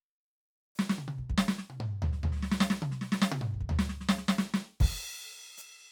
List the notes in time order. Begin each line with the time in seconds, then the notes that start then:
0.75 snare, hi-hat pedal
0.89 snare
0.98 high tom
1.08 high tom
1.18 kick
1.29 kick
1.38 snare
1.48 snare
1.70 high tom
1.80 mid tom
2.02 floor tom
2.12 snare
2.23 floor tom
2.32 snare
2.36 snare
2.40 snare
2.43 snare
2.52 snare
2.60 snare
2.70 snare
2.82 high tom
2.91 snare
3.01 snare
3.12 snare
3.22 snare
3.32 high tom
3.41 mid tom
3.54 kick
3.60 kick
3.69 floor tom
3.79 snare
3.89 snare
4.01 snare
4.09 snare
4.18 snare
4.28 snare
4.38 snare, hi-hat pedal
4.54 snare
4.80 kick, crash
5.58 hi-hat pedal